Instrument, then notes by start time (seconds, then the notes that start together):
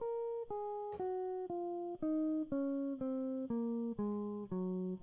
electric guitar
0.02 A#4
0.51 G#4
1.00 F#4
1.51 F4
2.03 D#4
2.53 C#4
3.02 C4
3.51 A#3
4.00 G#3
4.53 F#3